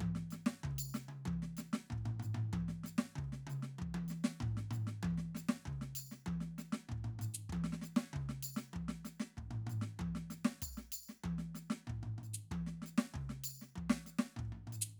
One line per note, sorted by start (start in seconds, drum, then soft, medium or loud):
0.01 kick soft
0.01 high tom loud
0.07 kick soft
0.15 snare soft
0.31 snare soft
0.31 percussion soft
0.47 snare medium
0.64 kick soft
0.64 mid tom medium
0.71 kick soft
0.79 percussion medium
0.95 snare medium
0.95 percussion soft
1.09 mid tom medium
1.26 kick soft
1.26 high tom loud
1.33 kick soft
1.43 snare soft
1.57 snare soft
1.57 percussion medium
1.73 snare medium
1.91 kick soft
1.91 floor tom medium
1.98 kick soft
2.06 floor tom medium
2.20 floor tom medium
2.20 percussion soft
2.35 floor tom medium
2.53 kick soft
2.53 high tom loud
2.61 kick soft
2.69 snare soft
2.84 snare soft
2.84 percussion medium
2.99 snare medium
3.16 kick soft
3.16 mid tom medium
3.24 kick soft
3.33 snare soft
3.47 mid tom medium
3.47 percussion soft
3.63 snare soft
3.79 kick soft
3.79 high tom medium
3.95 high tom medium
4.09 snare soft
4.09 percussion soft
4.24 snare medium
4.41 kick soft
4.41 floor tom medium
4.48 kick soft
4.52 kick soft
4.57 snare soft
4.71 floor tom medium
4.71 percussion soft
4.87 snare soft
5.03 kick soft
5.03 high tom loud
5.11 kick soft
5.14 kick soft
5.14 snare soft
5.35 snare soft
5.35 percussion medium
5.49 snare medium
5.66 kick soft
5.66 mid tom medium
5.73 kick soft
5.82 snare soft
5.96 percussion medium
6.12 snare soft
6.27 kick soft
6.27 high tom medium
6.34 kick soft
6.41 snare soft
6.59 snare soft
6.59 percussion soft
6.73 snare medium
6.89 kick soft
6.89 floor tom medium
6.98 kick soft
7.05 floor tom medium
7.19 floor tom medium
7.19 percussion medium
7.34 floor tom medium
7.50 kick soft
7.50 high tom loud
7.57 kick soft
7.64 snare soft
7.73 snare soft
7.82 snare soft
7.82 percussion soft
7.97 snare medium
8.14 kick soft
8.14 mid tom medium
8.29 snare soft
8.43 percussion medium
8.46 percussion soft
8.57 snare medium
8.74 kick soft
8.74 high tom medium
8.89 snare medium
9.05 snare soft
9.05 percussion medium
9.20 snare medium
9.38 kick soft
9.38 floor tom soft
9.51 floor tom medium
9.67 floor tom medium
9.67 percussion soft
9.82 snare soft
10.00 kick soft
10.00 high tom medium
10.15 snare soft
10.31 snare soft
10.31 percussion medium
10.45 snare medium
10.62 kick soft
10.62 percussion medium
10.78 snare soft
10.92 percussion medium
10.92 percussion soft
11.09 snare soft
11.24 kick soft
11.24 high tom loud
11.39 snare soft
11.55 snare soft
11.55 percussion soft
11.70 snare medium
11.88 kick soft
11.88 floor tom medium
12.03 floor tom medium
12.18 floor tom medium
12.24 percussion soft
12.34 floor tom medium
12.52 kick soft
12.52 high tom medium
12.67 snare soft
12.82 snare soft
12.86 percussion soft
12.98 snare medium
13.14 kick soft
13.14 mid tom medium
13.25 kick soft
13.30 snare soft
13.44 percussion medium
13.48 percussion soft
13.62 snare soft
13.76 kick soft
13.76 high tom medium
13.90 snare medium
14.06 snare soft
14.06 percussion soft
14.19 snare medium
14.37 kick soft
14.37 floor tom medium
14.45 kick soft
14.53 floor tom soft
14.68 floor tom medium
14.73 percussion medium
14.82 floor tom loud